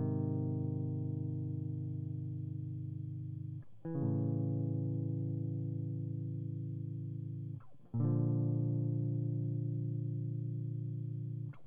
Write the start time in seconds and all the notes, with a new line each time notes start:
0.00 G#2 C3 D#3
3.86 E3
3.96 C#3
4.04 A2
7.96 A#2
8.02 D3 F3